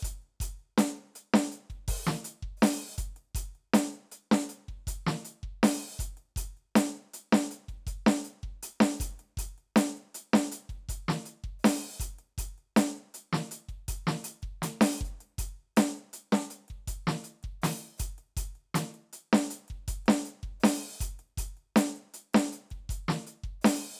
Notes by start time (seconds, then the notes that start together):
0.01 closed hi-hat, kick, hi-hat pedal
0.22 closed hi-hat
0.40 closed hi-hat, kick
0.59 closed hi-hat
0.78 closed hi-hat, snare
0.96 closed hi-hat
1.15 closed hi-hat
1.34 snare, closed hi-hat
1.51 closed hi-hat
1.70 kick, closed hi-hat
1.88 open hi-hat, kick
2.07 snare
2.17 hi-hat pedal
2.24 closed hi-hat
2.42 kick
2.57 hi-hat pedal
2.62 open hi-hat, snare
2.95 closed hi-hat, kick, hi-hat pedal
3.16 closed hi-hat
3.35 closed hi-hat, kick
3.55 closed hi-hat
3.73 closed hi-hat, snare
3.93 closed hi-hat
4.11 closed hi-hat
4.31 snare
4.49 closed hi-hat
4.68 kick, closed hi-hat
4.87 closed hi-hat, kick
5.06 snare
5.25 closed hi-hat
5.43 kick, closed hi-hat
5.63 open hi-hat, snare
5.98 closed hi-hat, kick, hi-hat pedal
6.17 closed hi-hat
6.36 closed hi-hat, kick
6.57 closed hi-hat
6.75 closed hi-hat, snare
6.95 closed hi-hat
7.13 closed hi-hat
7.32 snare
7.51 closed hi-hat
7.68 kick, closed hi-hat
7.87 closed hi-hat, kick
8.06 snare
8.24 closed hi-hat
8.43 kick, closed hi-hat
8.62 open hi-hat
8.80 snare
8.97 closed hi-hat, kick, hi-hat pedal
9.19 closed hi-hat
9.37 closed hi-hat, kick
9.58 closed hi-hat
9.76 closed hi-hat, snare
9.97 closed hi-hat
10.14 closed hi-hat
10.33 snare, closed hi-hat
10.52 closed hi-hat
10.69 kick, closed hi-hat
10.89 closed hi-hat, kick
11.08 snare
11.25 closed hi-hat
11.44 kick, closed hi-hat
11.59 hi-hat pedal
11.64 open hi-hat, snare
11.98 closed hi-hat, kick, hi-hat pedal
12.18 closed hi-hat
12.38 closed hi-hat, kick
12.58 closed hi-hat
12.76 closed hi-hat, snare
13.14 closed hi-hat
13.33 snare, closed hi-hat
13.51 closed hi-hat
13.68 kick, closed hi-hat
13.88 closed hi-hat, kick
14.07 snare, closed hi-hat
14.24 closed hi-hat
14.42 kick, closed hi-hat
14.62 closed hi-hat, snare
14.81 open hi-hat, snare
14.99 kick, hi-hat pedal
15.04 closed hi-hat
15.20 closed hi-hat
15.38 closed hi-hat, kick
15.76 closed hi-hat, snare
15.95 closed hi-hat
16.13 closed hi-hat
16.32 snare, closed hi-hat
16.50 closed hi-hat
16.68 kick, closed hi-hat
16.87 closed hi-hat, kick
17.07 snare
17.24 closed hi-hat
17.41 kick, snare, closed hi-hat
17.62 open hi-hat, snare, hi-hat pedal
17.98 closed hi-hat, kick, hi-hat pedal
18.18 closed hi-hat
18.37 closed hi-hat, kick
18.55 closed hi-hat
18.74 closed hi-hat, snare
18.94 closed hi-hat
19.13 closed hi-hat
19.33 snare
19.50 closed hi-hat
19.68 kick, closed hi-hat
19.88 closed hi-hat, kick
20.06 snare, closed hi-hat
20.25 closed hi-hat
20.43 kick, closed hi-hat
20.60 snare, hi-hat pedal
20.64 open hi-hat
21.00 closed hi-hat, kick, hi-hat pedal
21.19 closed hi-hat
21.37 closed hi-hat, kick
21.57 closed hi-hat
21.76 closed hi-hat, snare
21.96 closed hi-hat
22.14 closed hi-hat
22.33 snare, closed hi-hat
22.52 closed hi-hat
22.70 kick, closed hi-hat
22.89 closed hi-hat, kick
23.08 snare, closed hi-hat
23.27 closed hi-hat
23.43 kick, closed hi-hat
23.61 open hi-hat, snare, hi-hat pedal